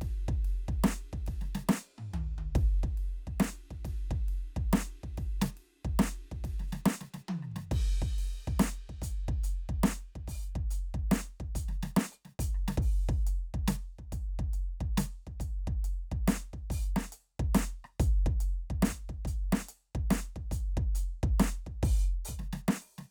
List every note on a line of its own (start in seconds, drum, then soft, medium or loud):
0.02 kick medium
0.02 ride medium
0.29 kick medium
0.45 ride medium
0.69 kick medium
0.84 snare loud
0.84 ride medium
1.14 kick medium
1.27 kick medium
1.27 ride medium
1.42 snare soft
1.56 snare medium
1.69 snare loud
1.69 hi-hat pedal medium
1.99 mid tom medium
2.14 floor tom loud
2.39 floor tom medium
2.56 kick loud
2.56 ride medium
2.84 kick medium
2.98 ride medium
3.28 kick soft
3.41 snare loud
3.45 ride medium
3.71 kick soft
3.85 kick medium
3.85 ride medium
4.11 kick medium
4.29 ride medium
4.57 kick medium
4.74 snare loud
4.74 ride medium
5.04 kick medium
5.18 kick medium
5.18 ride medium
5.42 snare loud
5.58 ride medium
5.85 kick medium
6.00 snare loud
6.00 ride medium
6.32 kick medium
6.45 kick medium
6.45 ride medium
6.60 snare soft
6.68 hi-hat pedal soft
6.73 snare medium
6.86 snare loud
6.92 hi-hat pedal soft
7.01 snare medium
7.14 snare medium
7.29 high tom loud
7.43 cross-stick soft
7.52 kick soft
7.57 snare medium
7.72 kick loud
7.72 crash medium
8.03 kick medium
8.19 open hi-hat medium
8.48 kick medium
8.59 closed hi-hat loud
8.59 kick soft
8.59 snare loud
8.90 kick soft
9.03 closed hi-hat loud
9.03 kick medium
9.29 kick medium
9.44 closed hi-hat medium
9.70 kick medium
9.84 closed hi-hat loud
9.84 snare loud
10.16 kick soft
10.28 open hi-hat medium
10.28 kick medium
10.56 kick medium
10.71 closed hi-hat medium
10.95 kick medium
11.12 closed hi-hat loud
11.12 snare loud
11.41 kick medium
11.56 closed hi-hat loud
11.56 kick medium
11.69 snare soft
11.83 snare medium
11.97 snare loud
11.97 hi-hat pedal soft
12.12 open hi-hat medium
12.12 hi-hat pedal soft
12.26 snare soft
12.40 closed hi-hat loud
12.40 kick medium
12.55 cross-stick soft
12.69 snare medium
12.78 kick loud
12.83 open hi-hat medium
12.83 snare soft
13.09 kick loud
13.27 closed hi-hat medium
13.55 kick medium
13.68 closed hi-hat loud
13.68 snare loud
13.99 kick soft
14.13 kick medium
14.13 closed hi-hat medium
14.40 kick medium
14.54 closed hi-hat medium
14.81 kick medium
14.98 closed hi-hat loud
14.98 snare loud
15.28 kick soft
15.41 kick medium
15.41 closed hi-hat medium
15.68 kick medium
15.85 closed hi-hat medium
16.12 kick medium
16.28 closed hi-hat loud
16.28 snare loud
16.54 kick soft
16.58 cross-stick soft
16.71 open hi-hat loud
16.71 kick medium
16.97 snare medium
17.13 closed hi-hat medium
17.40 kick medium
17.55 closed hi-hat loud
17.55 snare loud
17.85 cross-stick medium
18.00 closed hi-hat loud
18.00 kick loud
18.27 kick loud
18.41 closed hi-hat medium
18.71 kick medium
18.83 closed hi-hat loud
18.83 snare loud
18.89 kick soft
19.10 kick medium
19.26 closed hi-hat medium
19.26 kick medium
19.53 snare loud
19.69 closed hi-hat medium
19.96 kick medium
20.11 closed hi-hat loud
20.11 snare loud
20.37 kick medium
20.52 closed hi-hat medium
20.52 kick medium
20.78 kick medium
20.96 closed hi-hat loud
21.24 kick loud
21.40 closed hi-hat loud
21.40 snare loud
21.67 kick soft
21.84 open hi-hat loud
21.84 kick loud
22.26 open hi-hat loud
22.26 kick soft
22.26 hi-hat pedal soft
22.40 snare soft
22.53 snare medium
22.69 snare loud
22.83 open hi-hat soft
22.99 snare soft